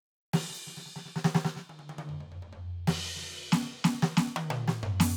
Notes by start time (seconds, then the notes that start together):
0.34 snare, crash
0.50 snare
0.55 hi-hat pedal
0.67 snare
0.77 snare
0.86 snare
0.96 snare
1.06 snare
1.16 snare
1.25 snare
1.35 snare
1.45 snare
1.57 snare
1.70 high tom
1.80 high tom
1.90 high tom
1.99 high tom
2.10 floor tom
2.21 floor tom
2.32 floor tom
2.43 floor tom
2.53 floor tom
2.88 snare, ride
3.06 snare
3.16 snare
3.22 snare
3.26 snare
3.38 snare
3.41 snare
3.44 snare
3.48 snare
3.53 snare
3.65 snare
3.71 snare
3.75 snare
3.79 snare
3.82 snare
3.85 snare
4.03 snare
4.17 snare
4.37 high tom
4.51 mid tom
4.68 snare
4.83 floor tom
5.01 open hi-hat, snare